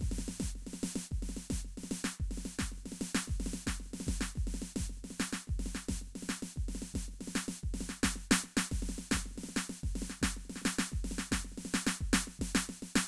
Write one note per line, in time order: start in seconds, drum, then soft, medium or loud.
0.01 kick soft
0.01 snare soft
0.09 kick soft
0.09 snare soft
0.19 snare soft
0.26 snare medium
0.26 hi-hat pedal soft
0.40 kick soft
0.40 snare medium
0.55 snare soft
0.62 snare soft
0.67 snare soft
0.73 snare soft
0.82 snare medium
0.82 hi-hat pedal medium
0.96 snare medium
1.11 kick soft
1.11 snare soft
1.18 kick soft
1.22 snare soft
1.29 snare soft
1.35 snare soft
1.35 hi-hat pedal medium
1.50 kick soft
1.50 snare medium
1.57 kick soft
1.65 snare soft
1.77 snare soft
1.84 snare soft
1.90 snare medium
1.90 hi-hat pedal soft
2.04 snare medium
2.20 kick soft
2.20 snare soft
2.26 kick soft
2.31 snare soft
2.38 snare soft
2.42 snare soft
2.42 hi-hat pedal soft
2.59 kick soft
2.59 snare medium
2.72 snare soft
2.78 snare soft
2.84 snare soft
2.86 snare soft
2.92 snare soft
2.98 snare medium
2.98 hi-hat pedal soft
3.15 snare medium
3.28 kick soft
3.28 snare soft
3.36 kick soft
3.36 snare soft
3.46 snare medium
3.51 snare medium
3.51 hi-hat pedal medium
3.67 kick soft
3.67 snare medium
3.80 snare soft
3.86 snare soft
3.91 snare soft
3.94 snare soft
4.00 snare soft
4.06 kick soft
4.06 snare medium
4.06 hi-hat pedal soft
4.13 kick soft
4.21 snare medium
4.36 kick soft
4.36 snare soft
4.44 kick soft
4.44 snare soft
4.54 snare soft
4.62 snare soft
4.62 hi-hat pedal soft
4.76 kick soft
4.76 snare medium
4.85 kick soft
4.90 snare soft
4.97 snare soft
5.03 snare soft
5.11 snare soft
5.19 snare medium
5.19 hi-hat pedal soft
5.33 snare medium
5.47 kick soft
5.47 snare soft
5.55 kick soft
5.55 snare soft
5.59 snare soft
5.66 snare soft
5.74 snare medium
5.74 hi-hat pedal soft
5.89 kick soft
5.89 snare medium
5.95 kick soft
6.01 snare soft
6.07 snare soft
6.13 snare soft
6.15 snare soft
6.22 snare soft
6.28 snare medium
6.28 hi-hat pedal soft
6.42 snare medium
6.56 kick soft
6.56 snare soft
6.64 snare soft
6.69 snare soft
6.75 snare soft
6.75 hi-hat pedal soft
6.82 snare soft
6.94 kick soft
6.94 snare medium
7.08 snare soft
7.14 snare soft
7.19 snare soft
7.21 snare soft
7.28 snare soft
7.33 snare medium
7.33 hi-hat pedal medium
7.48 snare medium
7.63 kick soft
7.63 snare soft
7.71 kick soft
7.71 snare soft
7.81 snare soft
7.87 snare soft
7.87 hi-hat pedal soft
8.03 kick soft
8.03 snare loud
8.16 snare soft
8.31 snare loud
8.42 snare soft
8.42 hi-hat pedal soft
8.57 snare loud
8.71 kick soft
8.71 snare soft
8.79 kick soft
8.79 snare soft
8.89 snare soft
8.97 snare soft
8.97 hi-hat pedal soft
9.11 kick soft
9.11 snare medium
9.17 snare soft
9.26 snare soft
9.31 snare soft
9.36 snare soft
9.38 snare soft
9.44 snare soft
9.49 snare soft
9.53 snare medium
9.53 hi-hat pedal soft
9.70 snare soft
9.84 kick soft
9.84 snare soft
9.89 kick soft
9.95 snare soft
10.02 snare medium
10.08 snare soft
10.08 hi-hat pedal soft
10.22 kick soft
10.22 snare medium
10.37 snare soft
10.45 snare soft
10.50 snare soft
10.56 snare soft
10.62 snare soft
10.62 hi-hat pedal soft
10.65 snare medium
10.79 snare medium
10.92 kick soft
10.92 snare soft
11.00 kick soft
11.04 snare soft
11.11 snare soft
11.16 snare medium
11.16 hi-hat pedal soft
11.32 kick soft
11.32 snare medium
11.37 kick soft
11.45 snare soft
11.52 snare soft
11.58 snare soft
11.65 snare soft
11.71 snare medium
11.71 hi-hat pedal medium
11.87 snare medium
12.01 kick soft
12.01 snare soft
12.13 snare loud
12.22 hi-hat pedal soft
12.27 snare soft
12.39 kick soft
12.39 snare medium
12.55 snare loud
12.69 snare soft
12.81 snare soft
12.81 hi-hat pedal soft
12.96 snare loud